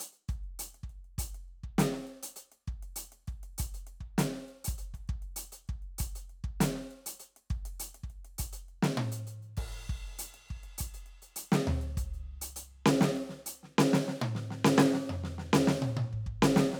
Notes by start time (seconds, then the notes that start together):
0.00 closed hi-hat
0.12 closed hi-hat
0.28 closed hi-hat, kick
0.43 closed hi-hat
0.59 closed hi-hat
0.74 closed hi-hat
0.83 kick
0.89 closed hi-hat
1.04 closed hi-hat
1.18 closed hi-hat, kick
1.29 kick
1.34 closed hi-hat
1.48 closed hi-hat
1.63 kick
1.78 closed hi-hat, snare
1.93 snare
2.07 closed hi-hat
2.23 closed hi-hat
2.36 closed hi-hat
2.52 closed hi-hat
2.67 kick, closed hi-hat
2.83 closed hi-hat
2.96 closed hi-hat
3.12 closed hi-hat
3.27 kick, closed hi-hat
3.43 closed hi-hat
3.58 closed hi-hat, kick
3.74 closed hi-hat
3.87 closed hi-hat
4.00 kick
4.18 closed hi-hat, snare
4.33 snare
4.48 closed hi-hat
4.64 closed hi-hat, kick
4.78 closed hi-hat
4.94 kick, closed hi-hat
5.08 kick, closed hi-hat
5.22 closed hi-hat
5.36 closed hi-hat
5.52 closed hi-hat
5.68 kick, closed hi-hat
5.82 closed hi-hat
5.98 closed hi-hat, kick
6.15 closed hi-hat
6.29 closed hi-hat
6.44 kick
6.60 closed hi-hat, snare
6.75 snare
6.91 closed hi-hat
7.06 closed hi-hat
7.20 closed hi-hat
7.36 closed hi-hat
7.50 kick, closed hi-hat
7.65 closed hi-hat
7.79 closed hi-hat
7.94 closed hi-hat
8.03 kick
8.10 closed hi-hat
8.25 closed hi-hat
8.38 closed hi-hat, kick
8.53 closed hi-hat
8.68 closed hi-hat
8.83 snare
8.97 high tom
9.12 closed hi-hat
9.27 closed hi-hat
9.42 closed hi-hat
9.57 kick, crash
9.72 closed hi-hat
9.89 kick
10.03 closed hi-hat
10.19 closed hi-hat
10.34 closed hi-hat
10.49 kick, closed hi-hat
10.63 closed hi-hat
10.78 closed hi-hat, kick
10.94 closed hi-hat
11.06 closed hi-hat
11.22 closed hi-hat
11.36 closed hi-hat
11.52 snare
11.67 floor tom
11.81 closed hi-hat
11.97 closed hi-hat, kick
12.13 closed hi-hat
12.41 closed hi-hat
12.56 closed hi-hat
12.86 snare
13.01 snare
13.16 closed hi-hat
13.29 snare
13.46 closed hi-hat
13.63 snare
13.78 snare
13.93 snare
14.08 snare
14.21 high tom
14.35 snare
14.51 snare
14.64 snare
14.78 snare
14.94 snare
15.09 mid tom
15.23 snare
15.38 snare
15.53 snare
15.67 snare
15.82 high tom
15.97 high tom
16.12 kick
16.26 kick
16.42 snare
16.56 snare
16.73 snare